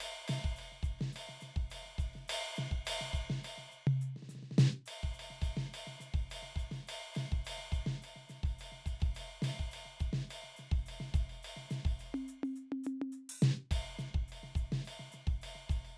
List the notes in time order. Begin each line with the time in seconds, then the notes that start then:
0.01 hi-hat pedal, ride bell
0.28 snare, hi-hat pedal, ride
0.45 kick, snare
0.57 hi-hat pedal, ride bell
0.72 snare
0.83 kick, hi-hat pedal, ride
0.99 snare, ride
1.13 hi-hat pedal, ride bell
1.29 snare
1.41 snare, hi-hat pedal, ride
1.57 kick, ride
1.71 hi-hat pedal, ride bell
1.82 snare
1.86 snare
1.89 snare
1.99 kick, hi-hat pedal, ride
2.14 snare, ride
2.28 hi-hat pedal, ride
2.56 snare, hi-hat pedal, ride
2.72 kick, snare
2.86 hi-hat pedal, ride
3.01 snare
3.14 kick, hi-hat pedal, ride
3.30 snare
3.44 hi-hat pedal, ride
3.58 snare
3.72 snare, hi-hat pedal
3.87 floor tom
4.02 hi-hat pedal
4.17 snare
4.23 snare
4.30 snare, hi-hat pedal
4.36 snare
4.39 snare
4.43 snare
4.52 snare
4.59 snare, hi-hat pedal
4.86 hi-hat pedal, ride
5.04 kick
5.14 hi-hat pedal
5.20 ride bell
5.31 snare
5.42 kick, hi-hat pedal, ride
5.57 snare, ride
5.74 hi-hat pedal, ride bell
5.87 snare
6.01 snare, hi-hat pedal, ride
6.14 kick, ride
6.31 hi-hat pedal, ride bell
6.43 snare
6.56 kick, hi-hat pedal, ride
6.72 snare, ride
6.88 hi-hat pedal, ride bell
7.14 snare, hi-hat pedal, ride
7.32 kick, snare
7.45 hi-hat pedal, ride
7.58 snare
7.72 kick, hi-hat pedal, ride
7.87 snare, ride
8.03 hi-hat pedal, ride bell
8.16 snare
8.29 snare, hi-hat pedal, ride
8.44 kick, ride
8.59 hi-hat pedal, ride bell
8.72 snare
8.86 kick, hi-hat pedal, ride
9.01 kick, ride
9.15 hi-hat pedal, ride bell
9.43 snare, hi-hat pedal, ride
9.57 kick, ride
9.72 hi-hat pedal, ride bell
9.86 snare
10.00 kick, hi-hat pedal, ride
10.13 snare, ride
10.30 hi-hat pedal, ride bell
10.44 snare
10.57 snare, hi-hat pedal, ride
10.72 kick, ride
10.86 hi-hat pedal, ride bell
11.01 snare
11.15 kick, hi-hat pedal, ride
11.30 ride
11.43 hi-hat pedal, ride bell
11.57 snare
11.71 snare, hi-hat pedal, ride
11.85 kick, ride
12.00 hi-hat pedal, ride bell
12.15 open hi-hat, high tom
12.28 hi-hat pedal
12.44 open hi-hat, high tom
12.56 hi-hat pedal
12.72 high tom
12.84 hi-hat pedal, high tom
13.02 high tom
13.13 hi-hat pedal
13.30 open hi-hat
13.42 snare, hi-hat pedal
13.71 kick, hi-hat pedal, ride
13.99 snare, hi-hat pedal
14.15 kick, snare
14.28 hi-hat pedal
14.32 ride bell
14.44 snare
14.56 kick, hi-hat pedal
14.60 ride
14.73 snare, ride
14.85 hi-hat pedal, ride bell
15.00 snare
15.12 snare, hi-hat pedal, ride
15.27 kick, ride
15.42 hi-hat pedal, ride bell
15.56 snare
15.70 kick, hi-hat pedal, ride
15.85 ride